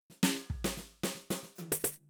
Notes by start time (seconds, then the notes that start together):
0.10 snare
0.23 snare
0.35 snare
0.50 kick, snare
0.64 snare
0.77 snare
1.03 snare
1.15 snare
1.30 snare
1.43 snare
1.55 hi-hat pedal, high tom
1.72 high tom
1.84 high tom